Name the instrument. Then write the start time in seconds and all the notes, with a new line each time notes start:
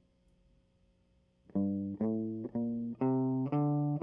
electric guitar
1.58 G2
2.03 A2
2.57 A#2
3.03 C3
3.54 D3